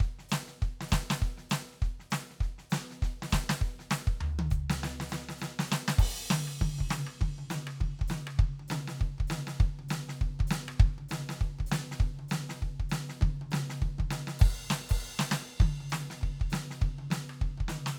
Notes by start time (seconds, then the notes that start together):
0.01 kick, snare
0.20 snare
0.30 snare, hi-hat pedal
0.48 snare
0.62 kick, snare
0.82 snare
0.89 kick, snare, hi-hat pedal
1.11 snare
1.23 kick, snare
1.38 snare
1.50 snare, hi-hat pedal
1.73 snare
1.83 kick, snare
2.01 snare
2.11 snare, hi-hat pedal
2.31 snare
2.41 kick, snare
2.59 snare
2.71 snare, hi-hat pedal
2.78 kick
2.91 snare
3.03 kick, snare
3.23 snare
3.31 kick, snare, hi-hat pedal
3.50 snare
3.62 kick, snare
3.80 snare
3.91 snare, hi-hat pedal
4.08 kick
4.21 floor tom
4.40 high tom
4.51 kick, hi-hat pedal
4.71 snare
4.84 snare
5.01 snare
5.10 snare, hi-hat pedal
5.29 snare
5.39 snare, hi-hat pedal
5.60 snare
5.67 kick, hi-hat pedal
5.73 snare
5.89 snare
5.99 kick, crash
6.30 snare, hi-hat pedal, high tom
6.48 cross-stick
6.62 kick, high tom
6.79 kick, high tom
6.90 snare, hi-hat pedal, high tom
7.08 cross-stick
7.22 kick, high tom
7.39 high tom
7.51 snare, hi-hat pedal, high tom
7.68 cross-stick
7.81 kick, high tom
8.00 kick, high tom
8.09 snare, hi-hat pedal, high tom
8.28 cross-stick
8.40 kick, high tom
8.60 high tom
8.69 snare, hi-hat pedal, high tom
8.88 snare
9.01 kick, high tom
9.19 kick, high tom
9.28 snare, hi-hat pedal, high tom
9.48 snare
9.61 kick, high tom
9.80 high tom
9.89 snare, hi-hat pedal, high tom
10.10 snare
10.22 kick, high tom
10.40 kick, high tom
10.48 snare, hi-hat pedal
10.53 high tom
10.69 cross-stick
10.81 kick, high tom
10.99 high tom
11.09 snare, hi-hat pedal, high tom
11.30 snare
11.42 kick, high tom
11.60 kick, high tom
11.67 hi-hat pedal
11.72 snare, high tom
11.92 snare
12.01 kick, high tom
12.20 high tom
12.29 snare, hi-hat pedal, high tom
12.50 snare
12.63 kick, high tom
12.80 kick, high tom
12.90 snare, hi-hat pedal, high tom
13.10 snare
13.22 kick, high tom
13.42 high tom
13.52 snare, hi-hat pedal, high tom
13.71 snare
13.83 kick, high tom
13.99 kick, high tom
14.11 snare, hi-hat pedal, high tom
14.28 snare
14.40 kick, crash
14.70 snare, hi-hat pedal
14.90 kick, crash
15.20 snare
15.30 snare, hi-hat pedal
15.61 kick, high tom
15.81 high tom
15.90 snare, hi-hat pedal, high tom
16.11 snare
16.22 kick, high tom
16.41 kick, high tom
16.51 snare, hi-hat pedal, high tom
16.71 snare
16.82 kick, high tom
16.99 high tom
17.11 snare, hi-hat pedal, high tom
17.30 cross-stick
17.42 kick, high tom
17.58 kick, high tom
17.69 snare, hi-hat pedal, high tom
17.87 snare